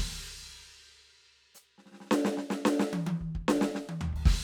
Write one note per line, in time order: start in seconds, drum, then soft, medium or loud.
1.55 hi-hat pedal medium
1.78 snare soft
1.86 snare soft
1.92 snare soft
1.94 snare soft
2.01 snare soft
2.05 snare soft
2.11 snare loud
2.25 snare loud
2.37 snare medium
2.50 snare loud
2.65 snare loud
2.80 snare loud
2.93 hi-hat pedal soft
2.93 high tom loud
3.07 high tom loud
3.21 kick soft
3.35 kick medium
3.41 kick soft
3.48 snare loud
3.61 snare loud
3.75 snare medium
3.89 high tom loud
4.01 floor tom loud
4.13 kick soft
4.13 crash medium
4.26 kick loud
4.26 crash loud